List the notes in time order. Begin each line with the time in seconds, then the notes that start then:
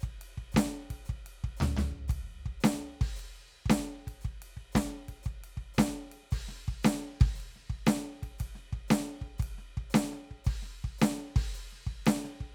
0.01 kick, hi-hat pedal
0.22 ride
0.38 kick
0.52 kick, hi-hat pedal
0.57 snare, ride
0.91 kick, ride
1.05 hi-hat pedal
1.10 kick
1.27 ride
1.44 kick
1.57 floor tom, hi-hat pedal
1.62 snare
1.77 snare, floor tom
1.92 kick
2.08 kick, hi-hat pedal, ride
2.30 hi-hat pedal
2.46 kick
2.61 snare, hi-hat pedal
2.65 ride
3.01 kick, crash
3.16 hi-hat pedal, ride
3.39 hi-hat pedal
3.66 kick, hi-hat pedal
3.70 snare, ride
4.07 kick, ride
4.21 kick, hi-hat pedal
4.42 ride
4.57 kick
4.72 kick, snare, hi-hat pedal
4.77 ride
5.09 kick, ride
5.23 kick, hi-hat pedal
5.44 hi-hat pedal, ride
5.57 kick
5.74 hi-hat pedal
5.78 kick, snare, ride
6.12 ride
6.31 kick, hi-hat pedal, crash
6.48 snare
6.68 kick
6.83 snare, hi-hat pedal, ride
7.21 kick, crash
7.36 hi-hat pedal
7.40 ride
7.56 snare
7.70 kick
7.87 snare, hi-hat pedal, ride
8.23 kick, ride
8.39 kick, hi-hat pedal, ride
8.55 snare
8.73 kick
8.88 snare, hi-hat pedal, ride
9.07 snare
9.22 kick
9.39 kick, hi-hat pedal
9.43 ride
9.58 snare
9.77 kick
9.90 hi-hat pedal
9.95 snare, ride
10.12 snare
10.31 kick
10.45 kick, hi-hat pedal, crash
10.62 snare
10.84 kick
10.99 snare, hi-hat pedal, ride
11.17 snare
11.36 kick, crash
11.55 hi-hat pedal, ride
11.72 snare
11.87 kick
12.06 snare, hi-hat pedal, ride
12.24 snare
12.41 kick